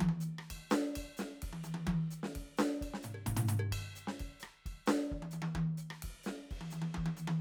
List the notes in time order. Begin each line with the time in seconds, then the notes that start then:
0.01 kick, high tom
0.09 high tom
0.21 hi-hat pedal
0.39 cross-stick
0.51 kick, ride bell
0.71 snare, hi-hat pedal
0.96 kick, ride bell
1.17 snare, hi-hat pedal
1.42 kick, ride
1.53 high tom
1.64 hi-hat pedal, high tom
1.75 high tom
1.87 kick, high tom
2.11 hi-hat pedal
2.24 snare
2.36 kick, ride
2.58 snare, hi-hat pedal
2.82 kick, ride bell
2.94 snare
3.03 hi-hat pedal, mid tom
3.15 percussion
3.27 kick, mid tom
3.37 mid tom
3.48 hi-hat pedal, mid tom
3.60 percussion
3.72 kick, ride bell
3.96 hi-hat pedal
4.08 snare
4.20 kick, ride bell
4.27 kick
4.40 cross-stick, hi-hat pedal
4.66 kick, ride bell
4.87 snare, hi-hat pedal
5.12 kick, high tom
5.23 high tom
5.31 hi-hat pedal, high tom
5.42 high tom
5.55 kick, high tom
5.78 hi-hat pedal
5.91 cross-stick
6.03 kick, ride
6.24 snare, hi-hat pedal
6.51 kick, ride
6.61 high tom
6.71 hi-hat pedal, high tom
6.82 high tom
6.95 kick, high tom
7.06 high tom
7.17 hi-hat pedal, high tom
7.28 high tom